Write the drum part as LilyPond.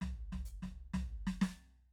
\new DrumStaff \drummode { \time 4/4 \tempo 4 = 125 \tuplet 3/2 { <sn tomfh>8 r8 <sn tomfh>8 hhp8 <sn tomfh>8 r8 <sn tomfh>8 r8 sn8 } sn4 | }